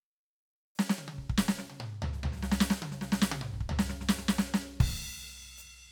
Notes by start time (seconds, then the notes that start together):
0.75 snare, hi-hat pedal
0.89 snare
0.98 high tom
1.08 high tom
1.18 kick
1.29 kick
1.38 snare
1.48 snare
1.70 high tom
1.80 mid tom
2.02 floor tom
2.12 snare
2.23 floor tom
2.32 snare
2.36 snare
2.40 snare
2.43 snare
2.52 snare
2.60 snare
2.70 snare
2.82 high tom
2.91 snare
3.01 snare
3.12 snare
3.22 snare
3.32 high tom
3.41 mid tom
3.54 kick
3.60 kick
3.69 floor tom
3.79 snare
3.89 snare
4.01 snare
4.09 snare
4.18 snare
4.28 snare
4.38 snare, hi-hat pedal
4.54 snare
4.80 kick, crash
5.58 hi-hat pedal